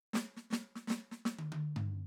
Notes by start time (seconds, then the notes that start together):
0.13 snare
0.15 snare
0.37 snare
0.50 snare
0.52 snare
0.76 snare
0.87 snare
0.90 snare
1.11 snare
1.25 snare
1.38 high tom
1.52 high tom
1.76 floor tom